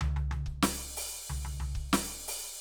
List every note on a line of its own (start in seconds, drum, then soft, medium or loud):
0.01 floor tom loud
0.01 high tom loud
0.16 floor tom medium
0.16 high tom medium
0.31 floor tom medium
0.31 high tom loud
0.46 kick medium
0.63 open hi-hat loud
0.63 snare loud
0.96 open hi-hat loud
1.29 floor tom loud
1.29 high tom medium
1.45 floor tom medium
1.45 high tom medium
1.60 floor tom medium
1.60 high tom medium
1.75 kick medium
1.93 open hi-hat loud
1.93 snare loud
2.27 open hi-hat loud